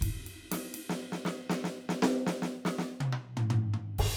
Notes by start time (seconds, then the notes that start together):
0.01 kick, ride
0.27 ride
0.52 snare, ride
0.74 ride
0.89 snare
1.12 snare
1.25 snare
1.50 snare
1.64 snare
1.89 snare
2.02 snare
2.27 snare
2.42 snare
2.65 snare
2.79 snare
3.00 high tom
3.13 high tom
3.37 mid tom
3.50 mid tom
3.74 mid tom
3.99 kick, crash